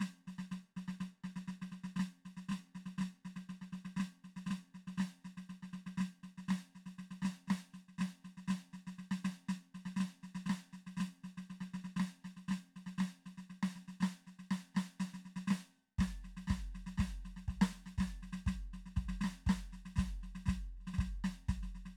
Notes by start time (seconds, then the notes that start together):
0.00 snare
0.27 snare
0.38 snare
0.51 snare
0.76 snare
0.88 snare
1.00 snare
1.24 snare
1.36 snare
1.48 snare
1.62 snare
1.72 snare
1.84 snare
1.96 snare
1.99 snare
2.25 snare
2.37 snare
2.49 snare
2.51 snare
2.75 snare
2.86 snare
2.98 snare
3.01 snare
3.25 snare
3.36 snare
3.49 snare
3.61 snare
3.72 snare
3.85 snare
3.96 snare
4.00 snare
4.24 snare
4.36 snare
4.50 snare
4.74 snare
4.87 snare
4.97 snare
5.00 snare
5.24 snare
5.37 snare
5.49 snare
5.62 snare
5.73 snare
5.86 snare
5.97 snare
6.00 snare
6.23 snare
6.38 snare
6.48 snare
6.50 snare
6.75 snare
6.86 snare
6.98 snare
7.11 snare
7.22 snare
7.25 snare
7.47 snare
7.50 snare
7.74 snare
7.88 snare
8.01 snare
8.24 snare
8.37 snare
8.48 snare
8.50 snare
8.73 snare
8.87 snare
8.98 snare
9.11 snare
9.24 snare
9.49 snare
9.74 snare
9.85 snare
9.96 snare
10.00 snare
10.23 snare
10.35 snare
10.46 snare
10.49 snare
10.73 snare
10.87 snare
10.97 snare
11.00 snare
11.24 snare
11.37 snare
11.50 snare
11.61 snare
11.74 snare
11.84 snare
11.96 snare
12.00 snare
12.24 snare
12.37 snare
12.48 snare
12.51 snare
12.76 snare
12.86 snare
12.98 snare
13.00 snare
13.26 snare
13.38 snare
13.50 snare
13.63 snare
13.75 snare
13.88 snare
14.00 snare
14.03 snare
14.27 snare
14.39 snare
14.51 snare
14.75 snare
14.76 snare
15.00 snare
15.14 snare
15.25 snare
15.36 snare
15.47 snare
15.50 snare
15.98 kick, snare
16.01 snare
16.24 snare
16.37 snare
16.47 kick, snare
16.50 snare
16.75 snare
16.86 snare
16.98 kick, snare
17.00 snare
17.25 snare
17.36 snare
17.48 kick, snare
17.61 snare
17.72 snare
17.86 snare
17.98 kick, snare
18.00 snare
18.23 snare
18.46 kick, snare
18.73 snare
18.86 snare
18.96 kick, snare
19.08 snare
19.21 snare
19.24 snare
19.46 kick, snare
19.49 snare
19.73 snare
19.85 snare
19.96 kick, snare
19.99 snare
20.23 snare
20.35 snare
20.46 kick, snare
20.49 snare
20.77 snare
20.80 snare
20.87 snare
20.94 snare
20.98 kick, snare
21.24 snare
21.49 kick, snare
21.63 snare
21.75 snare
21.85 snare